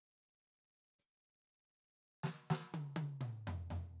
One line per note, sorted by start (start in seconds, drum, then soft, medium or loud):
0.99 hi-hat pedal soft
2.23 snare medium
2.50 snare medium
2.74 high tom medium
2.96 high tom medium
3.21 mid tom medium
3.47 floor tom medium
3.70 floor tom medium